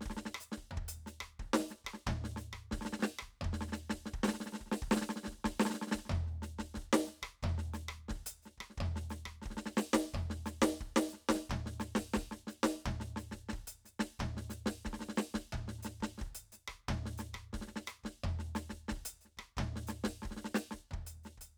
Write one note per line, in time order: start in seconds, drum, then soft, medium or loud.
0.01 snare soft
0.05 kick soft
0.10 snare soft
0.17 snare soft
0.25 snare soft
0.34 cross-stick medium
0.40 hi-hat pedal medium
0.52 snare medium
0.57 kick soft
0.71 floor tom medium
0.77 kick soft
0.88 closed hi-hat medium
1.06 snare soft
1.06 hi-hat pedal soft
1.20 kick soft
1.20 cross-stick medium
1.39 kick soft
1.39 snare soft
1.53 snare loud
1.59 snare soft
1.68 snare soft
1.68 hi-hat pedal soft
1.84 kick soft
1.84 cross-stick medium
1.93 snare soft
2.06 kick soft
2.06 floor tom loud
2.24 snare soft
2.36 snare soft
2.36 hi-hat pedal soft
2.52 kick soft
2.52 cross-stick medium
2.71 kick soft
2.71 snare medium
2.81 snare soft
2.85 snare medium
2.92 snare medium
2.99 snare soft
3.02 snare medium
3.02 hi-hat pedal soft
3.19 kick soft
3.19 cross-stick medium
3.41 kick soft
3.41 floor tom medium
3.53 snare soft
3.61 snare soft
3.68 snare soft
3.72 snare medium
3.72 hi-hat pedal soft
3.89 kick soft
3.89 snare medium
4.05 snare soft
4.13 kick soft
4.23 snare medium
4.27 snare medium
4.33 snare soft
4.40 snare soft
4.40 hi-hat pedal soft
4.46 snare soft
4.52 snare soft
4.54 snare soft
4.59 kick soft
4.59 snare soft
4.66 snare soft
4.71 snare medium
4.82 kick soft
4.91 snare loud
4.96 snare medium
5.01 snare medium
5.09 snare medium
5.09 hi-hat pedal soft
5.16 snare soft
5.23 snare soft
5.25 kick soft
5.25 snare medium
5.31 snare soft
5.38 snare soft
5.44 kick soft
5.44 snare medium
5.59 snare loud
5.65 snare medium
5.70 snare medium
5.70 hi-hat pedal soft
5.74 snare soft
5.81 snare medium
5.87 snare soft
5.94 kick soft
5.94 snare soft
6.05 snare soft
6.09 kick soft
6.09 floor tom loud
6.26 snare soft
6.42 snare soft
6.42 hi-hat pedal soft
6.58 kick soft
6.58 snare medium
6.74 kick soft
6.74 snare soft
6.93 snare loud
7.05 snare soft
7.05 hi-hat pedal soft
7.22 kick soft
7.22 cross-stick medium
7.42 kick soft
7.42 floor tom loud
7.58 snare soft
7.73 snare soft
7.73 hi-hat pedal soft
7.88 kick soft
7.88 cross-stick medium
8.08 kick soft
8.08 snare soft
8.26 closed hi-hat medium
8.42 snare soft
8.42 hi-hat pedal soft
8.57 kick soft
8.57 cross-stick medium
8.70 snare soft
8.77 kick soft
8.77 floor tom loud
8.96 snare soft
9.09 snare soft
9.09 hi-hat pedal soft
9.25 kick soft
9.25 cross-stick medium
9.42 kick soft
9.42 snare soft
9.50 snare soft
9.57 snare soft
9.66 snare soft
9.77 snare medium
9.77 hi-hat pedal medium
9.93 kick soft
9.93 snare loud
10.13 kick soft
10.13 floor tom medium
10.30 snare soft
10.46 snare medium
10.46 hi-hat pedal medium
10.61 kick soft
10.61 snare loud
10.80 kick soft
10.80 snare soft
10.96 snare loud
11.09 hi-hat pedal soft
11.13 snare soft
11.29 kick soft
11.29 snare loud
11.35 snare soft
11.49 kick soft
11.49 floor tom medium
11.66 snare soft
11.80 snare medium
11.80 hi-hat pedal soft
11.95 kick soft
11.95 snare medium
12.13 kick soft
12.13 snare medium
12.31 snare soft
12.47 snare soft
12.47 hi-hat pedal soft
12.63 kick soft
12.63 snare loud
12.85 kick soft
12.85 floor tom medium
13.00 snare soft
13.16 snare soft
13.16 hi-hat pedal soft
13.31 kick soft
13.31 snare soft
13.49 snare medium
13.53 kick soft
13.67 closed hi-hat medium
13.85 snare soft
13.85 hi-hat pedal soft
13.99 kick soft
13.99 snare medium
14.19 kick soft
14.19 floor tom medium
14.37 snare soft
14.49 snare soft
14.49 hi-hat pedal medium
14.66 kick soft
14.66 snare medium
14.85 kick soft
14.85 snare soft
14.93 snare soft
14.99 snare soft
15.08 snare soft
15.16 snare medium
15.16 hi-hat pedal soft
15.34 kick soft
15.34 snare medium
15.52 kick soft
15.52 floor tom medium
15.68 snare soft
15.79 snare soft
15.79 hi-hat pedal medium
15.85 snare soft
16.00 kick soft
16.00 snare medium
16.18 kick soft
16.18 snare soft
16.35 closed hi-hat medium
16.52 snare soft
16.52 hi-hat pedal medium
16.68 kick soft
16.68 cross-stick medium
16.88 kick soft
16.88 floor tom loud
17.05 snare soft
17.17 snare soft
17.17 hi-hat pedal medium
17.33 kick soft
17.33 cross-stick medium
17.53 kick soft
17.53 snare soft
17.61 snare soft
17.67 snare soft
17.76 snare soft
17.87 cross-stick medium
17.87 hi-hat pedal soft
18.03 kick soft
18.03 snare soft
18.23 kick soft
18.23 floor tom medium
18.39 snare soft
18.55 snare medium
18.55 hi-hat pedal soft
18.69 kick soft
18.69 snare soft
18.88 kick soft
18.88 snare medium
19.05 closed hi-hat medium
19.21 hi-hat pedal soft
19.25 snare soft
19.37 kick soft
19.37 cross-stick medium
19.57 kick soft
19.57 floor tom loud
19.76 snare soft
19.87 snare soft
19.87 hi-hat pedal medium
20.04 kick soft
20.04 snare medium
20.22 kick soft
20.22 snare soft
20.31 snare soft
20.36 snare soft
20.44 snare soft
20.54 snare medium
20.54 hi-hat pedal medium
20.71 kick soft
20.71 snare soft
20.91 kick soft
20.91 floor tom medium
21.06 closed hi-hat medium
21.23 snare soft
21.23 hi-hat pedal soft
21.37 closed hi-hat medium
21.37 kick soft